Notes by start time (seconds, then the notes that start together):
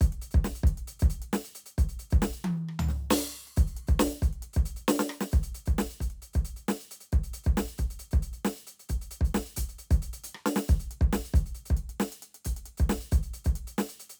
0.01 closed hi-hat, kick
0.12 closed hi-hat
0.22 closed hi-hat
0.31 closed hi-hat, kick
0.45 snare
0.55 closed hi-hat
0.64 kick, closed hi-hat
0.78 closed hi-hat
0.88 closed hi-hat
1.00 closed hi-hat, kick
1.10 closed hi-hat
1.22 closed hi-hat
1.33 snare
1.45 closed hi-hat
1.55 closed hi-hat
1.66 closed hi-hat
1.78 closed hi-hat, kick
1.89 closed hi-hat
1.99 closed hi-hat
2.10 closed hi-hat, kick
2.22 snare
2.33 closed hi-hat
2.44 high tom
2.56 snare
2.69 cross-stick
2.79 floor tom
2.89 snare
3.10 snare, crash
3.47 closed hi-hat
3.57 closed hi-hat, kick
3.67 closed hi-hat
3.77 closed hi-hat
3.87 closed hi-hat, kick
4.00 snare
4.22 closed hi-hat, kick
4.33 closed hi-hat
4.42 closed hi-hat
4.54 closed hi-hat, kick
4.66 closed hi-hat
4.76 closed hi-hat
4.88 snare
4.99 snare
5.10 cross-stick
5.21 snare
5.32 closed hi-hat, kick
5.43 closed hi-hat
5.55 closed hi-hat
5.66 closed hi-hat, kick
5.78 snare
5.90 closed hi-hat
6.01 closed hi-hat, kick
6.10 closed hi-hat
6.22 closed hi-hat
6.34 closed hi-hat, kick
6.45 closed hi-hat
6.56 closed hi-hat
6.68 snare
6.80 closed hi-hat
6.91 closed hi-hat
7.01 closed hi-hat
7.12 kick, closed hi-hat
7.24 closed hi-hat
7.34 closed hi-hat
7.44 closed hi-hat, kick
7.57 snare
7.68 closed hi-hat
7.78 closed hi-hat, kick
7.90 closed hi-hat
7.99 closed hi-hat
8.11 closed hi-hat, kick
8.22 closed hi-hat
8.33 closed hi-hat
8.45 snare
8.56 closed hi-hat
8.67 closed hi-hat
8.80 closed hi-hat
8.89 closed hi-hat, kick
9.02 closed hi-hat
9.11 closed hi-hat
9.21 closed hi-hat, kick
9.35 snare
9.46 closed hi-hat
9.57 closed hi-hat, kick
9.69 closed hi-hat
9.79 closed hi-hat
9.91 closed hi-hat, kick
10.02 closed hi-hat
10.13 closed hi-hat
10.24 closed hi-hat
10.35 cross-stick
10.46 snare
10.56 snare
10.68 closed hi-hat, kick
10.80 closed hi-hat
10.91 closed hi-hat
11.01 kick, closed hi-hat
11.13 snare
11.25 closed hi-hat
11.34 closed hi-hat, kick
11.46 closed hi-hat
11.55 closed hi-hat
11.66 closed hi-hat
11.70 kick
11.77 closed hi-hat
11.89 closed hi-hat
12.00 snare
12.12 closed hi-hat
12.22 closed hi-hat
12.35 closed hi-hat
12.45 closed hi-hat, kick
12.57 closed hi-hat
12.66 closed hi-hat
12.78 closed hi-hat, kick
12.90 snare
13.01 closed hi-hat
13.12 closed hi-hat, kick
13.23 closed hi-hat
13.34 closed hi-hat
13.45 closed hi-hat, kick
13.56 closed hi-hat
13.67 closed hi-hat
13.78 snare
13.89 closed hi-hat
14.00 closed hi-hat
14.10 closed hi-hat